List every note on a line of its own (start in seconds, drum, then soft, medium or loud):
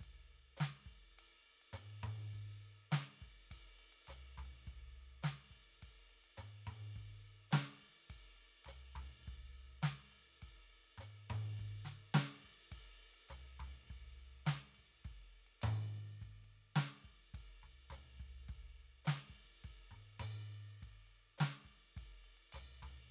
0.01 kick soft
0.01 ride soft
0.57 snare medium
0.57 hi-hat pedal medium
0.57 ride medium
0.86 kick soft
0.86 ride soft
1.19 ride medium
1.47 ride soft
1.62 ride soft
1.74 hi-hat pedal medium
1.74 high tom medium
1.74 ride medium
2.04 high tom medium
2.04 ride medium
2.34 kick soft
2.34 ride soft
2.92 snare medium
2.92 hi-hat pedal medium
2.92 ride medium
3.21 kick soft
3.21 ride soft
3.52 kick soft
3.52 ride medium
3.80 ride soft
3.93 ride soft
4.08 floor tom soft
4.08 hi-hat pedal medium
4.08 ride soft
4.38 floor tom medium
4.38 ride soft
4.66 kick soft
4.66 ride soft
5.23 snare medium
5.23 hi-hat pedal medium
5.23 ride medium
5.51 kick soft
5.51 ride soft
5.83 kick soft
5.83 ride medium
6.10 ride soft
6.25 ride soft
6.38 hi-hat pedal medium
6.38 high tom soft
6.38 ride soft
6.67 high tom medium
6.67 ride medium
6.96 kick soft
6.96 ride soft
7.25 ride soft
7.52 snare medium
7.52 hi-hat pedal medium
7.52 ride medium
7.81 kick soft
7.81 ride soft
8.10 kick soft
8.10 ride medium
8.37 ride soft
8.52 ride soft
8.65 floor tom soft
8.65 hi-hat pedal medium
8.65 ride medium
8.96 floor tom medium
8.96 ride medium
9.26 kick soft
9.26 ride soft
9.54 ride soft
9.83 snare medium
9.83 hi-hat pedal medium
9.83 ride medium
10.12 ride soft
10.43 kick soft
10.43 ride medium
10.71 ride soft
10.85 ride soft
10.98 hi-hat pedal medium
10.98 high tom soft
10.98 ride soft
11.30 high tom medium
11.30 ride medium
11.58 kick soft
11.58 ride soft
11.86 snare soft
11.86 ride soft
12.15 snare medium
12.15 hi-hat pedal medium
12.15 ride medium
12.43 kick soft
12.43 ride soft
12.72 kick soft
12.72 ride medium
13.01 ride soft
13.14 ride soft
13.30 floor tom soft
13.30 hi-hat pedal medium
13.30 ride soft
13.60 floor tom medium
13.60 ride medium
13.89 kick soft
13.89 ride soft
14.46 snare medium
14.46 hi-hat pedal medium
14.46 ride medium
14.75 kick soft
14.75 ride soft
15.05 kick soft
15.05 ride soft
15.32 ride soft
15.47 ride soft
15.62 hi-hat pedal medium
15.62 high tom medium
15.62 ride bell medium
16.22 kick soft
16.22 ride soft
16.45 ride soft
16.76 snare medium
16.76 hi-hat pedal medium
16.76 ride medium
17.05 kick soft
17.05 ride soft
17.34 kick soft
17.34 ride medium
17.64 floor tom soft
17.91 floor tom medium
17.91 hi-hat pedal medium
17.91 ride medium
18.20 kick soft
18.49 kick soft
18.49 ride soft
19.05 snare medium
19.05 hi-hat pedal medium
19.05 ride medium
19.30 kick soft
19.30 ride soft
19.65 kick soft
19.65 ride soft
19.92 high tom soft
19.92 ride soft
20.20 hi-hat pedal medium
20.20 high tom medium
20.20 ride bell medium
20.83 kick soft
20.83 ride soft
21.08 ride soft
21.38 snare medium
21.38 hi-hat pedal medium
21.38 ride medium
21.65 kick soft
21.65 ride soft
21.97 kick soft
21.97 ride medium
22.25 ride soft
22.38 ride soft
22.53 floor tom medium
22.53 hi-hat pedal medium
22.53 ride bell medium
22.83 floor tom medium
22.83 ride medium